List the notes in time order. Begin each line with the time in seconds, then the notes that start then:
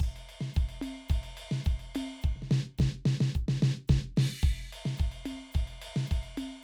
0.01 kick, hi-hat pedal
0.05 ride
0.18 ride
0.31 ride
0.36 kick
0.43 snare
0.56 kick, hi-hat pedal, ride
0.71 ride
0.84 high tom, ride
1.10 kick, hi-hat pedal, ride
1.25 ride
1.39 ride
1.45 kick
1.53 snare
1.66 kick, hi-hat pedal, ride
1.81 ride
1.97 kick, high tom, ride
2.23 kick, hi-hat pedal
2.38 snare
2.44 snare
2.53 snare
2.80 kick, snare, hi-hat pedal
3.08 snare
3.23 snare
3.36 kick, hi-hat pedal
3.50 snare
3.64 snare
3.90 kick, snare, hi-hat pedal
4.18 kick, snare, crash
4.44 kick, hi-hat pedal
4.50 ride
4.75 ride
4.88 snare
4.99 kick, hi-hat pedal, ride
5.14 ride
5.28 high tom, ride
5.34 kick
5.54 kick, hi-hat pedal, ride
5.69 ride
5.84 ride
5.90 kick
5.98 snare
6.09 hi-hat pedal
6.13 kick, ride
6.25 ride
6.39 kick, high tom, ride